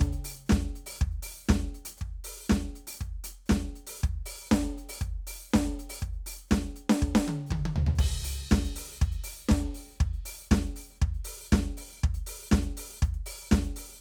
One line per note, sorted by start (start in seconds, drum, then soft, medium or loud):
0.01 closed hi-hat medium
0.01 kick loud
0.13 closed hi-hat medium
0.25 open hi-hat loud
0.46 snare loud
0.46 hi-hat pedal soft
0.52 kick loud
0.63 closed hi-hat soft
0.76 closed hi-hat medium
0.86 open hi-hat loud
0.96 hi-hat pedal soft
1.00 kick loud
1.00 closed hi-hat soft
1.11 closed hi-hat soft
1.23 open hi-hat loud
1.45 snare loud
1.45 hi-hat pedal soft
1.50 kick loud
1.75 closed hi-hat soft
1.85 closed hi-hat loud
1.97 closed hi-hat medium
1.97 hi-hat pedal soft
2.01 kick medium
2.24 open hi-hat loud
2.46 snare loud
2.46 hi-hat pedal soft
2.52 kick loud
2.74 closed hi-hat medium
2.74 kick soft
2.87 open hi-hat loud
2.96 closed hi-hat soft
2.96 hi-hat pedal soft
3.01 kick medium
3.09 closed hi-hat soft
3.24 open hi-hat loud
3.41 open hi-hat soft
3.46 snare loud
3.46 hi-hat pedal soft
3.51 kick loud
3.65 closed hi-hat soft
3.76 closed hi-hat soft
3.87 open hi-hat loud
4.00 kick loud
4.00 closed hi-hat soft
4.00 hi-hat pedal soft
4.14 closed hi-hat soft
4.26 open hi-hat loud
4.42 open hi-hat soft
4.48 snare loud
4.48 hi-hat pedal soft
4.52 kick medium
4.78 closed hi-hat soft
4.89 open hi-hat loud
4.98 kick medium
4.98 hi-hat pedal soft
5.03 closed hi-hat soft
5.14 closed hi-hat soft
5.22 kick soft
5.27 open hi-hat loud
5.50 snare loud
5.50 hi-hat pedal soft
5.55 kick medium
5.79 open hi-hat medium
5.90 open hi-hat loud
5.98 closed hi-hat soft
5.98 hi-hat pedal soft
6.02 kick medium
6.13 closed hi-hat soft
6.26 open hi-hat loud
6.48 kick loud
6.48 snare loud
6.48 hi-hat pedal soft
6.66 closed hi-hat soft
6.72 open hi-hat medium
6.72 kick soft
6.90 snare loud
6.97 hi-hat pedal soft
7.02 kick loud
7.15 snare loud
7.28 high tom loud
7.47 hi-hat pedal soft
7.51 kick medium
7.51 high tom loud
7.66 high tom loud
7.76 floor tom loud
7.87 floor tom loud
7.95 kick loud
7.95 hi-hat pedal soft
7.99 crash loud
8.24 open hi-hat loud
8.48 kick loud
8.48 snare loud
8.48 hi-hat pedal soft
8.65 closed hi-hat medium
8.76 open hi-hat loud
8.91 open hi-hat soft
8.96 hi-hat pedal soft
9.01 closed hi-hat soft
9.01 kick loud
9.12 closed hi-hat soft
9.24 open hi-hat loud
9.46 snare loud
9.46 hi-hat pedal soft
9.51 kick loud
9.65 closed hi-hat soft
9.72 open hi-hat medium
9.72 kick soft
9.90 open hi-hat soft
9.95 hi-hat pedal soft
10.00 kick loud
10.00 closed hi-hat soft
10.13 closed hi-hat soft
10.26 open hi-hat loud
10.38 open hi-hat soft
10.46 hi-hat pedal soft
10.51 kick loud
10.51 snare loud
10.66 closed hi-hat soft
10.76 open hi-hat medium
10.90 open hi-hat soft
10.95 hi-hat pedal soft
11.02 kick loud
11.02 closed hi-hat soft
11.14 closed hi-hat soft
11.25 open hi-hat loud
11.40 open hi-hat soft
11.47 hi-hat pedal soft
11.52 kick loud
11.52 snare loud
11.77 open hi-hat loud
11.93 open hi-hat soft
11.99 hi-hat pedal soft
12.04 kick loud
12.04 closed hi-hat soft
12.14 closed hi-hat soft
12.27 open hi-hat loud
12.42 open hi-hat medium
12.48 snare loud
12.48 hi-hat pedal soft
12.53 kick loud
12.64 closed hi-hat soft
12.77 open hi-hat loud
12.91 open hi-hat medium
12.98 hi-hat pedal soft
13.02 closed hi-hat soft
13.02 kick loud
13.14 closed hi-hat soft
13.26 open hi-hat loud
13.43 open hi-hat soft
13.48 snare loud
13.48 hi-hat pedal soft
13.53 kick loud
13.64 closed hi-hat soft
13.72 open hi-hat loud
13.72 kick soft
13.89 open hi-hat soft
13.97 hi-hat pedal soft